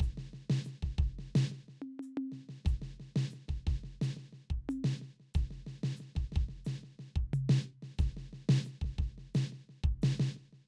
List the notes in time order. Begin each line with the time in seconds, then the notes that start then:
0.01 kick, snare, hi-hat pedal
0.18 snare
0.34 snare
0.51 snare
0.65 snare, hi-hat pedal
0.83 kick, snare
0.99 kick, snare
1.20 snare
1.36 snare, hi-hat pedal
1.52 snare
1.69 snare
1.83 high tom
2.00 hi-hat pedal, high tom
2.18 high tom
2.33 snare
2.50 snare
2.66 kick, snare, hi-hat pedal
2.83 snare
3.01 snare
3.17 snare
3.31 snare, hi-hat pedal
3.49 kick, snare
3.68 kick, snare
3.84 snare
4.02 snare, hi-hat pedal
4.18 snare
4.34 snare
4.51 kick
4.70 hi-hat pedal, high tom
4.85 snare
5.02 snare
5.21 snare
5.35 kick, snare, hi-hat pedal
5.52 snare
5.68 snare
5.84 snare
5.97 snare, hi-hat pedal
6.16 kick, snare
6.33 kick, snare
6.49 snare
6.66 snare, hi-hat pedal
6.84 snare
7.00 snare
7.17 kick
7.34 floor tom, hi-hat pedal
7.50 snare
7.83 snare
7.99 kick, snare, hi-hat pedal
8.18 snare
8.34 snare
8.50 snare
8.65 snare, hi-hat pedal
8.82 kick, snare
8.99 kick, snare
9.19 snare
9.35 snare, hi-hat pedal
9.53 snare
9.70 snare
9.85 kick
10.03 snare, hi-hat pedal
10.21 snare
10.37 snare
10.54 snare